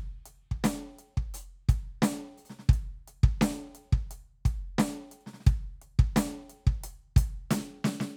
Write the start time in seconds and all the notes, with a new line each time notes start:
0.26 closed hi-hat
0.52 kick
0.65 closed hi-hat, snare
0.99 closed hi-hat
1.18 kick
1.35 closed hi-hat
1.69 kick, closed hi-hat
2.03 closed hi-hat, snare
2.38 closed hi-hat
2.46 closed hi-hat
2.50 snare
2.60 snare
2.69 kick, snare
2.74 closed hi-hat
3.08 closed hi-hat
3.24 kick
3.42 snare, closed hi-hat
3.76 closed hi-hat
3.93 kick
4.12 closed hi-hat
4.46 kick, closed hi-hat
4.79 snare, closed hi-hat
5.12 closed hi-hat
5.22 closed hi-hat
5.27 snare
5.34 snare
5.41 snare
5.47 kick, snare, closed hi-hat
5.82 closed hi-hat
6.00 kick
6.17 closed hi-hat, snare
6.50 closed hi-hat
6.67 kick
6.84 closed hi-hat
7.17 kick, closed hi-hat
7.51 closed hi-hat, snare
7.59 snare
7.85 snare
8.01 snare